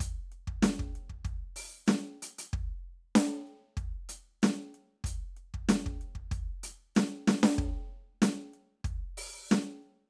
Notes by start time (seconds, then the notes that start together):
0.01 closed hi-hat, kick
0.33 closed hi-hat
0.48 kick
0.63 closed hi-hat, snare
0.80 kick
0.96 closed hi-hat
1.10 kick
1.25 kick, closed hi-hat
1.57 open hi-hat
1.87 snare, closed hi-hat, hi-hat pedal
2.05 closed hi-hat
2.23 closed hi-hat
2.39 closed hi-hat
2.54 kick
3.16 closed hi-hat, snare
3.48 closed hi-hat
3.78 kick, closed hi-hat
4.10 open hi-hat
4.43 closed hi-hat, snare, hi-hat pedal
4.75 closed hi-hat
5.05 closed hi-hat, kick
5.37 closed hi-hat
5.55 kick
5.69 closed hi-hat, snare
5.87 kick
6.02 closed hi-hat
6.16 kick
6.32 closed hi-hat, kick
6.64 open hi-hat
6.96 snare, hi-hat pedal
7.28 snare
7.44 snare
7.59 kick
8.23 closed hi-hat, snare
8.54 closed hi-hat
8.85 kick, closed hi-hat
9.18 open hi-hat
9.50 snare, closed hi-hat, hi-hat pedal
9.83 closed hi-hat